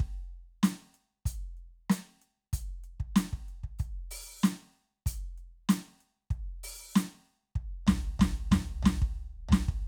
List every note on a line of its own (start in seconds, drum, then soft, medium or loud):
0.01 kick medium
0.64 closed hi-hat loud
0.64 snare loud
0.95 closed hi-hat soft
1.27 closed hi-hat loud
1.27 kick medium
1.58 closed hi-hat soft
1.91 closed hi-hat loud
1.91 snare loud
2.23 closed hi-hat soft
2.54 closed hi-hat loud
2.54 kick medium
2.85 closed hi-hat soft
3.01 kick medium
3.17 closed hi-hat loud
3.17 snare loud
3.34 kick medium
3.49 closed hi-hat soft
3.65 kick soft
3.80 closed hi-hat medium
3.80 kick medium
4.12 open hi-hat loud
4.44 closed hi-hat loud
4.44 snare loud
4.44 hi-hat pedal medium
5.07 closed hi-hat loud
5.07 kick medium
5.39 closed hi-hat soft
5.70 closed hi-hat loud
5.70 snare loud
6.02 closed hi-hat soft
6.31 kick medium
6.31 closed hi-hat soft
6.64 open hi-hat loud
6.97 open hi-hat loud
6.97 snare loud
6.97 hi-hat pedal soft
7.56 kick medium
7.88 kick medium
7.88 snare loud
7.88 floor tom loud
8.20 kick medium
8.20 snare loud
8.20 floor tom loud
8.53 kick medium
8.53 snare loud
8.53 floor tom loud
8.84 kick medium
8.84 snare loud
8.84 floor tom loud
9.03 kick medium
9.50 kick medium
9.50 snare loud
9.50 floor tom loud
9.69 kick medium